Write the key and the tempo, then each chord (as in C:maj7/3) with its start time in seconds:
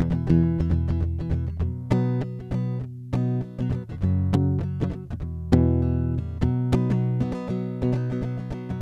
B major, 200 BPM
0.00 E:(1,5)
1.61 B:maj(11)/4
4.01 F#:(1,5)
5.21 E:(1,5)
6.41 B:maj(#11)/b5